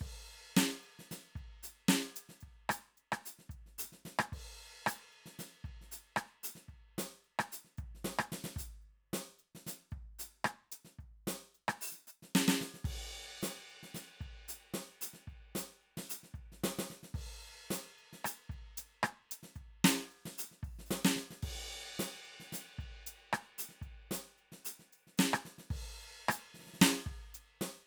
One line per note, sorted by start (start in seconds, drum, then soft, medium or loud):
0.01 kick soft
0.01 crash medium
0.27 closed hi-hat soft
0.57 closed hi-hat medium
0.57 snare loud
0.83 closed hi-hat soft
0.99 snare soft
1.11 closed hi-hat medium
1.11 snare medium
1.36 kick soft
1.36 closed hi-hat soft
1.63 closed hi-hat medium
1.89 snare loud
2.16 closed hi-hat loud
2.29 snare soft
2.41 kick soft
2.41 closed hi-hat soft
2.70 closed hi-hat loud
2.70 cross-stick medium
2.97 closed hi-hat soft
3.12 cross-stick medium
3.25 closed hi-hat medium
3.39 snare soft
3.50 kick soft
3.50 closed hi-hat soft
3.66 snare soft
3.78 closed hi-hat loud
3.93 snare soft
4.05 snare soft
4.19 cross-stick medium
4.32 kick soft
4.32 crash medium
4.60 closed hi-hat soft
4.87 closed hi-hat loud
4.87 cross-stick medium
5.12 closed hi-hat soft
5.26 snare soft
5.39 closed hi-hat medium
5.39 snare medium
5.64 kick soft
5.64 closed hi-hat soft
5.81 snare soft
5.92 closed hi-hat medium
6.17 cross-stick medium
6.43 closed hi-hat loud
6.55 snare soft
6.69 kick soft
6.69 closed hi-hat soft
6.98 closed hi-hat loud
6.98 snare medium
7.24 closed hi-hat soft
7.39 cross-stick medium
7.52 closed hi-hat loud
7.65 snare soft
7.78 kick soft
7.78 closed hi-hat soft
7.95 snare soft
8.05 snare medium
8.19 cross-stick medium
8.32 snare medium
8.44 snare medium
8.56 closed hi-hat medium
8.56 kick soft
8.82 closed hi-hat soft
9.13 closed hi-hat medium
9.13 snare medium
9.39 closed hi-hat soft
9.55 snare soft
9.67 closed hi-hat loud
9.67 snare medium
9.91 kick soft
9.91 closed hi-hat soft
10.19 closed hi-hat loud
10.45 cross-stick medium
10.72 closed hi-hat loud
10.85 snare soft
10.99 kick soft
10.99 closed hi-hat soft
11.27 closed hi-hat medium
11.27 snare medium
11.55 closed hi-hat soft
11.68 cross-stick medium
11.81 open hi-hat loud
11.92 snare soft
12.07 hi-hat pedal medium
12.23 snare soft
12.35 snare loud
12.48 snare loud
12.61 snare medium
12.74 snare soft
12.85 kick medium
12.85 ride medium
13.42 closed hi-hat loud
13.42 snare medium
13.42 hi-hat pedal medium
13.69 closed hi-hat soft
13.83 snare soft
13.95 closed hi-hat medium
13.95 snare medium
14.21 kick soft
14.21 closed hi-hat soft
14.48 closed hi-hat loud
14.74 snare medium
15.01 closed hi-hat loud
15.14 snare soft
15.28 kick soft
15.28 closed hi-hat soft
15.55 closed hi-hat loud
15.55 snare medium
15.83 closed hi-hat soft
15.97 snare medium
16.10 closed hi-hat loud
16.23 snare soft
16.34 kick soft
16.34 closed hi-hat soft
16.52 snare soft
16.64 snare loud
16.79 snare medium
16.90 snare soft
17.03 snare soft
17.14 kick soft
17.14 crash medium
17.42 closed hi-hat soft
17.71 closed hi-hat loud
17.71 snare medium
17.98 closed hi-hat soft
18.13 snare soft
18.25 closed hi-hat loud
18.25 cross-stick medium
18.50 kick soft
18.50 closed hi-hat soft
18.77 closed hi-hat loud
19.03 cross-stick medium
19.31 closed hi-hat loud
19.43 snare soft
19.56 kick soft
19.56 closed hi-hat soft
19.85 closed hi-hat loud
19.85 snare loud
20.11 closed hi-hat soft
20.26 snare medium
20.38 closed hi-hat loud
20.52 snare soft
20.63 kick soft
20.63 open hi-hat soft
20.79 snare soft
20.86 hi-hat pedal soft
20.91 snare loud
21.05 snare loud
21.16 snare soft
21.31 snare soft
21.43 kick soft
21.43 ride loud
21.99 closed hi-hat medium
21.99 snare medium
22.25 closed hi-hat soft
22.40 snare soft
22.53 closed hi-hat loud
22.53 snare medium
22.79 kick soft
22.79 closed hi-hat soft
23.07 closed hi-hat loud
23.33 cross-stick medium
23.58 closed hi-hat loud
23.69 snare soft
23.82 kick soft
23.82 closed hi-hat soft
24.11 closed hi-hat loud
24.11 snare medium
24.38 closed hi-hat soft
24.52 snare soft
24.65 closed hi-hat loud
24.80 snare soft
24.93 open hi-hat soft
25.07 snare soft
25.18 snare loud
25.18 hi-hat pedal medium
25.34 cross-stick medium
25.45 snare soft
25.58 snare soft
25.71 kick soft
25.71 crash medium
25.99 closed hi-hat soft
26.29 closed hi-hat loud
26.29 cross-stick medium
26.54 snare soft
26.59 snare soft
26.64 snare soft
26.67 snare soft
26.80 snare soft
26.82 snare loud
27.06 kick soft
27.34 closed hi-hat medium
27.61 snare medium